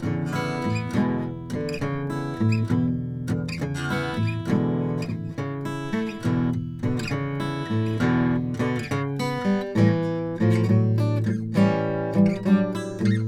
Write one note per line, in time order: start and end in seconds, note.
0.00 0.62 E2
0.06 0.64 C#3
0.06 0.66 D3
0.34 1.87 B3
0.34 1.81 E4
0.64 0.92 E2
0.64 0.86 A2
0.92 1.51 E2
0.92 1.52 B2
0.92 1.55 D3
0.98 1.31 G#3
1.51 1.77 E2
1.51 1.65 B2
1.57 1.80 D3
1.77 2.70 E2
1.83 2.38 C#3
1.83 2.26 D3
2.11 2.56 B3
2.11 2.91 E4
2.42 2.73 A2
2.71 3.29 E2
2.71 3.30 B2
2.71 3.30 D3
3.29 3.59 E2
3.29 3.50 B2
3.29 3.56 D3
3.60 4.15 E2
3.60 4.13 C#3
3.60 3.71 D3
3.91 4.22 B3
3.91 5.64 E4
4.16 4.47 E2
4.16 4.50 A2
4.47 6.24 E2
4.47 5.06 B2
4.52 5.08 D3
4.52 4.99 G#3
5.08 5.18 A2
5.08 5.35 D3
5.39 5.95 C#3
5.39 5.91 D3
5.66 6.52 E4
5.94 6.20 D3
5.94 6.22 A3
6.24 8.00 E2
6.24 6.54 B2
6.24 6.54 D3
6.55 6.84 B2
6.55 6.74 D3
6.84 7.02 B2
6.84 7.10 D3
7.12 7.68 C#3
7.12 7.71 D3
7.41 7.81 B3
7.41 8.41 E4
7.72 8.00 A2
7.72 7.98 D3
8.01 8.55 E2
8.01 8.61 B2
8.01 8.62 D3
8.55 8.91 E2
8.61 8.81 B2
8.61 8.92 D3
8.92 9.44 C#3
8.92 9.04 D3
9.21 9.67 B3
9.46 9.76 G3
9.76 9.97 A2
9.76 10.39 E3
9.81 9.93 G3
10.42 10.71 A2
10.42 10.72 F3
10.71 11.25 A2
10.71 11.26 F#3
11.01 11.24 D4
11.25 12.43 A2
11.56 12.14 E3
11.56 12.18 G3
11.56 12.21 C#4
12.15 12.43 E3
12.15 12.43 G3
12.45 13.07 F#3
12.45 13.01 G3
12.49 12.75 D4
12.76 12.93 E4
13.00 13.28 A2
13.00 13.20 G3